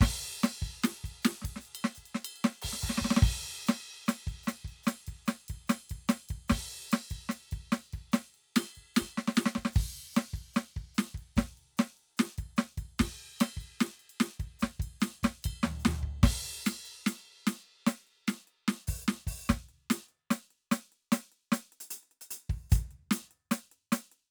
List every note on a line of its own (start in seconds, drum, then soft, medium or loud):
0.01 kick loud
0.01 snare loud
0.01 crash loud
0.21 ride soft
0.43 snare loud
0.43 hi-hat pedal medium
0.43 ride bell medium
0.62 kick medium
0.62 ride soft
0.83 snare loud
0.83 hi-hat pedal medium
0.83 ride loud
1.04 kick soft
1.04 ride bell soft
1.23 snare loud
1.23 hi-hat pedal medium
1.23 ride loud
1.42 kick medium
1.42 snare soft
1.42 ride loud
1.56 snare medium
1.61 hi-hat pedal medium
1.65 ride bell soft
1.75 ride bell loud
1.84 snare loud
1.95 kick soft
1.95 hi-hat pedal medium
1.95 ride soft
2.06 ride bell soft
2.15 snare medium
2.25 hi-hat pedal medium
2.25 ride bell loud
2.36 ride soft
2.45 snare loud
2.62 kick soft
2.62 crash loud
2.73 snare soft
2.80 kick medium
2.80 hi-hat pedal medium
2.80 ride loud
2.90 snare medium
2.98 kick soft
2.98 snare medium
3.05 snare medium
3.11 snare loud
3.17 snare loud
3.23 kick loud
3.23 crash loud
3.66 snare loud
3.66 hi-hat pedal loud
3.66 ride bell soft
4.07 snare loud
4.07 hi-hat pedal medium
4.07 ride bell medium
4.27 kick medium
4.27 ride soft
4.43 hi-hat pedal medium
4.48 snare medium
4.48 ride bell medium
4.65 kick soft
4.65 ride soft
4.84 snare loud
4.84 hi-hat pedal medium
4.88 ride bell medium
5.07 kick soft
5.07 ride bell soft
5.26 snare loud
5.26 hi-hat pedal medium
5.26 ride bell medium
5.49 kick soft
5.49 ride bell medium
5.68 snare loud
5.68 hi-hat pedal medium
5.68 ride bell medium
5.90 kick soft
5.90 ride bell medium
6.08 snare loud
6.08 hi-hat pedal medium
6.08 ride bell medium
6.29 kick medium
6.29 ride bell soft
6.48 kick medium
6.48 snare loud
6.48 hi-hat pedal medium
6.48 crash loud
6.90 snare loud
6.90 hi-hat pedal medium
6.90 ride bell medium
7.11 kick soft
7.11 ride bell soft
7.29 snare medium
7.29 hi-hat pedal medium
7.29 ride bell medium
7.52 kick medium
7.52 ride bell soft
7.72 snare loud
7.72 hi-hat pedal medium
7.72 ride bell soft
7.93 kick soft
7.93 ride soft
8.12 snare loud
8.12 hi-hat pedal medium
8.12 ride bell medium
8.34 ride soft
8.56 snare loud
8.56 hi-hat pedal medium
8.56 ride bell loud
8.76 kick soft
8.76 ride bell soft
8.95 snare loud
8.95 hi-hat pedal soft
8.95 ride bell loud
9.01 kick soft
9.18 snare medium
9.28 snare loud
9.35 snare loud
9.35 hi-hat pedal medium
9.46 snare loud
9.55 kick soft
9.55 snare medium
9.65 snare medium
9.73 kick loud
9.73 hi-hat pedal medium
9.73 crash medium
10.14 snare loud
10.14 hi-hat pedal medium
10.14 ride bell medium
10.34 kick medium
10.34 ride soft
10.54 snare loud
10.54 hi-hat pedal medium
10.54 ride bell soft
10.77 kick soft
10.77 ride soft
10.95 snare loud
10.95 hi-hat pedal medium
10.99 ride bell medium
11.15 kick soft
11.15 ride soft
11.36 kick medium
11.36 snare loud
11.36 hi-hat pedal medium
11.36 ride medium
11.58 ride soft
11.77 snare loud
11.77 hi-hat pedal medium
11.77 ride medium
11.97 ride soft
12.17 snare loud
12.17 hi-hat pedal medium
12.38 kick medium
12.38 ride bell soft
12.57 snare loud
12.57 hi-hat pedal medium
12.78 kick medium
12.78 ride bell soft
12.99 kick medium
12.99 snare loud
12.99 hi-hat pedal medium
12.99 crash medium
13.40 snare loud
13.40 hi-hat pedal medium
13.40 ride bell loud
13.57 kick soft
13.57 ride bell soft
13.80 snare loud
13.80 hi-hat pedal medium
13.80 ride bell soft
14.00 ride bell soft
14.10 ride bell soft
14.20 snare loud
14.20 hi-hat pedal medium
14.20 ride bell medium
14.40 kick medium
14.40 ride bell soft
14.59 kick soft
14.59 snare loud
14.59 hi-hat pedal medium
14.59 ride bell soft
14.80 kick medium
14.80 ride bell medium
15.01 snare loud
15.01 hi-hat pedal medium
15.01 ride bell medium
15.23 kick soft
15.23 snare loud
15.23 ride bell medium
15.43 kick medium
15.43 hi-hat pedal soft
15.43 ride bell loud
15.63 snare loud
15.63 floor tom medium
15.80 hi-hat pedal medium
15.85 snare loud
15.85 floor tom loud
16.03 kick soft
16.23 kick loud
16.23 snare loud
16.23 crash loud
16.29 hi-hat pedal soft
16.66 closed hi-hat loud
16.66 snare loud
16.85 closed hi-hat soft
17.07 closed hi-hat loud
17.07 snare loud
17.26 closed hi-hat soft
17.47 closed hi-hat medium
17.47 snare loud
17.66 closed hi-hat soft
17.87 closed hi-hat loud
17.87 snare loud
18.07 closed hi-hat soft
18.28 closed hi-hat medium
18.28 snare loud
18.48 closed hi-hat soft
18.68 snare loud
18.87 open hi-hat loud
18.87 kick medium
19.03 hi-hat pedal medium
19.08 snare loud
19.27 open hi-hat loud
19.27 kick medium
19.47 closed hi-hat medium
19.47 kick medium
19.47 snare loud
19.47 hi-hat pedal medium
19.69 closed hi-hat soft
19.90 closed hi-hat loud
19.90 snare loud
20.09 closed hi-hat soft
20.31 closed hi-hat loud
20.31 snare loud
20.51 closed hi-hat soft
20.71 closed hi-hat loud
20.71 snare loud
20.71 hi-hat pedal soft
20.92 closed hi-hat soft
21.12 closed hi-hat loud
21.12 snare loud
21.32 closed hi-hat soft
21.52 closed hi-hat loud
21.52 snare loud
21.72 closed hi-hat soft
21.81 closed hi-hat medium
21.91 closed hi-hat loud
22.03 closed hi-hat soft
22.11 closed hi-hat soft
22.21 closed hi-hat medium
22.29 closed hi-hat loud
22.29 hi-hat pedal soft
22.50 kick medium
22.50 open hi-hat soft
22.70 closed hi-hat loud
22.70 kick loud
22.70 hi-hat pedal medium
22.91 closed hi-hat soft
23.11 closed hi-hat loud
23.11 snare loud
23.31 closed hi-hat soft
23.51 closed hi-hat loud
23.51 snare loud
23.72 closed hi-hat soft
23.92 closed hi-hat loud
23.92 snare loud
24.12 closed hi-hat soft